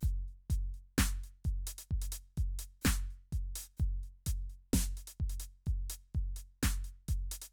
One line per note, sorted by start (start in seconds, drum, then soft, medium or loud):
0.01 kick medium
0.01 hi-hat pedal medium
0.05 closed hi-hat soft
0.28 closed hi-hat soft
0.50 kick medium
0.50 closed hi-hat medium
0.74 closed hi-hat soft
0.98 closed hi-hat medium
0.98 kick medium
0.98 snare loud
1.24 closed hi-hat soft
1.45 kick soft
1.45 closed hi-hat soft
1.67 closed hi-hat loud
1.79 closed hi-hat medium
1.91 kick soft
2.02 closed hi-hat medium
2.12 closed hi-hat loud
2.38 kick medium
2.38 closed hi-hat soft
2.59 closed hi-hat medium
2.82 snare medium
2.82 hi-hat pedal medium
2.86 kick medium
2.86 closed hi-hat medium
3.11 closed hi-hat soft
3.33 kick soft
3.33 closed hi-hat soft
3.56 open hi-hat loud
3.77 kick medium
3.77 closed hi-hat soft
3.77 hi-hat pedal soft
4.04 closed hi-hat soft
4.27 kick soft
4.27 closed hi-hat loud
4.50 closed hi-hat soft
4.73 kick medium
4.73 snare medium
4.73 closed hi-hat loud
4.97 closed hi-hat medium
5.08 closed hi-hat medium
5.20 kick soft
5.30 closed hi-hat medium
5.40 closed hi-hat loud
5.66 kick medium
5.66 closed hi-hat soft
5.90 closed hi-hat loud
6.14 kick soft
6.14 closed hi-hat soft
6.37 closed hi-hat medium
6.63 kick medium
6.63 snare medium
6.63 closed hi-hat loud
6.85 closed hi-hat soft
7.09 kick soft
7.09 closed hi-hat medium
7.32 closed hi-hat loud
7.42 closed hi-hat loud